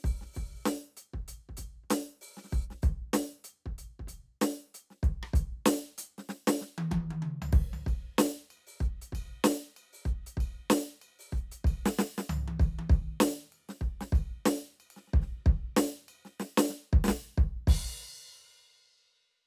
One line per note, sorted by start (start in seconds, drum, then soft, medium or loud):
0.04 open hi-hat medium
0.04 kick medium
0.21 snare soft
0.34 open hi-hat medium
0.34 kick medium
0.66 open hi-hat medium
0.66 snare loud
0.66 hi-hat pedal soft
0.97 closed hi-hat medium
1.14 kick medium
1.28 closed hi-hat medium
1.49 kick soft
1.57 closed hi-hat medium
1.57 kick soft
1.84 kick soft
1.90 closed hi-hat loud
1.90 snare loud
2.21 open hi-hat medium
2.28 open hi-hat soft
2.37 snare soft
2.44 snare soft
2.51 open hi-hat medium
2.51 kick medium
2.71 snare soft
2.82 closed hi-hat soft
2.82 kick loud
3.13 closed hi-hat medium
3.13 snare loud
3.44 closed hi-hat medium
3.66 kick medium
3.78 closed hi-hat medium
3.99 kick medium
4.08 closed hi-hat medium
4.08 kick soft
4.41 closed hi-hat medium
4.41 snare loud
4.74 closed hi-hat medium
4.91 snare soft
5.03 kick loud
5.03 closed hi-hat soft
5.23 cross-stick medium
5.34 closed hi-hat medium
5.34 kick loud
5.66 closed hi-hat loud
5.66 snare loud
5.98 closed hi-hat loud
6.18 snare medium
6.29 snare medium
6.47 snare loud
6.61 snare soft
6.61 hi-hat pedal soft
6.78 high tom loud
6.91 kick medium
6.91 high tom loud
7.11 high tom medium
7.22 mid tom medium
7.42 floor tom medium
7.53 kick loud
7.53 crash medium
7.73 floor tom medium
7.86 kick medium
7.86 ride bell soft
8.18 snare loud
8.18 hi-hat pedal medium
8.51 ride bell soft
8.67 open hi-hat medium
8.81 kick medium
9.02 closed hi-hat medium
9.13 kick medium
9.13 ride bell medium
9.44 snare loud
9.77 ride bell medium
9.93 open hi-hat medium
10.05 kick medium
10.26 closed hi-hat medium
10.37 kick medium
10.37 ride bell medium
10.70 snare loud
11.02 ride bell medium
11.19 open hi-hat medium
11.33 kick medium
11.37 hi-hat pedal soft
11.52 closed hi-hat medium
11.64 kick loud
11.64 ride bell medium
11.86 snare loud
11.99 snare loud
12.18 snare medium
12.18 hi-hat pedal soft
12.29 floor tom loud
12.48 high tom medium
12.60 kick loud
12.60 ride bell soft
12.79 high tom medium
12.90 kick loud
12.90 ride bell soft
13.20 snare loud
13.52 ride soft
13.69 snare medium
13.81 kick medium
14.01 snare medium
14.12 kick loud
14.12 ride bell soft
14.46 snare loud
14.46 hi-hat pedal soft
14.80 ride bell soft
14.90 ride medium
14.96 snare soft
15.08 snare soft
15.14 kick loud
15.22 snare soft
15.46 kick loud
15.46 ride bell soft
15.77 snare loud
15.77 hi-hat pedal medium
16.08 ride bell medium
16.25 snare soft
16.39 snare medium
16.39 hi-hat pedal soft
16.58 snare loud
16.70 snare soft
16.93 kick loud
17.04 snare loud
17.08 snare loud
17.38 kick loud
17.67 open hi-hat medium
17.67 kick loud
17.67 crash loud
17.77 hi-hat pedal soft